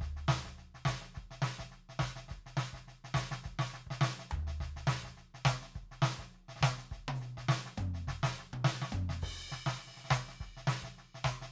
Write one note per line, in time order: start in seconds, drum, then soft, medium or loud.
0.01 kick soft
0.01 snare soft
0.08 kick soft
0.12 kick soft
0.17 snare soft
0.28 snare loud
0.28 hi-hat pedal medium
0.45 kick soft
0.45 snare soft
0.58 snare soft
0.75 snare soft
0.85 kick soft
0.85 snare loud
0.85 hi-hat pedal medium
0.94 kick soft
0.96 kick soft
1.01 snare soft
1.15 kick soft
1.15 snare soft
1.31 snare soft
1.42 snare loud
1.42 hi-hat pedal medium
1.59 kick soft
1.59 snare medium
1.72 snare soft
1.89 snare soft
1.99 kick soft
1.99 snare loud
1.99 hi-hat pedal medium
2.08 kick soft
2.16 snare soft
2.28 kick soft
2.28 snare soft
2.37 kick soft
2.46 snare soft
2.57 snare loud
2.57 hi-hat pedal medium
2.73 kick soft
2.73 snare soft
2.88 snare soft
3.04 snare soft
3.16 kick soft
3.16 hi-hat pedal medium
3.25 kick soft
3.31 snare medium
3.44 kick soft
3.44 snare soft
3.52 kick soft
3.59 snare loud
3.71 snare soft
3.71 hi-hat pedal medium
3.87 kick soft
3.87 snare medium
4.01 snare loud
4.19 snare soft
4.30 kick soft
4.30 floor tom loud
4.30 hi-hat pedal medium
4.41 kick soft
4.47 snare soft
4.60 kick soft
4.60 snare medium
4.67 kick soft
4.71 kick soft
4.76 snare soft
4.87 snare loud
4.87 hi-hat pedal medium
5.03 kick soft
5.03 snare soft
5.17 snare soft
5.34 snare soft
5.45 kick soft
5.45 snare loud
5.45 hi-hat pedal medium
5.52 kick soft
5.62 snare soft
5.75 kick soft
5.75 snare soft
5.83 kick soft
5.91 snare soft
6.02 snare loud
6.02 hi-hat pedal medium
6.19 kick soft
6.19 snare soft
6.34 snare soft
6.43 snare soft
6.49 snare soft
6.56 snare soft
6.61 kick soft
6.61 snare loud
6.61 hi-hat pedal medium
6.78 snare soft
6.91 kick soft
6.91 snare soft
6.99 kick soft
7.08 high tom loud
7.16 hi-hat pedal medium
7.21 snare soft
7.37 kick soft
7.37 snare medium
7.42 kick soft
7.49 snare loud
7.66 snare soft
7.77 kick soft
7.77 hi-hat pedal medium
7.77 mid tom loud
7.85 kick soft
7.88 kick soft
7.94 snare soft
8.08 kick medium
8.08 snare medium
8.15 kick soft
8.23 snare loud
8.33 hi-hat pedal medium
8.39 snare soft
8.53 kick soft
8.53 high tom loud
8.65 snare loud
8.82 snare medium
8.91 kick medium
8.91 hi-hat pedal medium
8.91 mid tom loud
9.09 snare medium
9.22 kick medium
9.22 crash loud
9.29 kick soft
9.34 kick soft
9.39 snare soft
9.49 snare medium
9.49 hi-hat pedal medium
9.66 kick soft
9.66 snare loud
9.79 snare soft
9.87 snare soft
9.93 snare soft
9.97 snare soft
10.04 snare soft
10.04 hi-hat pedal medium
10.11 kick soft
10.11 snare loud
10.28 snare soft
10.41 kick soft
10.41 snare soft
10.47 kick soft
10.57 snare soft
10.67 snare loud
10.67 hi-hat pedal medium
10.82 kick soft
10.82 snare soft
10.98 snare soft
11.15 snare soft
11.24 kick soft
11.24 snare loud
11.24 hi-hat pedal medium
11.42 snare medium